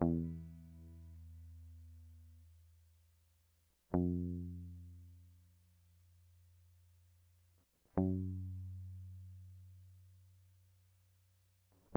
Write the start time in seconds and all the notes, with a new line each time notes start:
0.03 E2
0.16 E2
3.96 F2
7.99 F#2